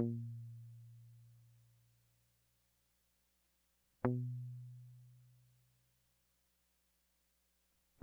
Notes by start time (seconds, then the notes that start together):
0.00 A#2
4.06 B2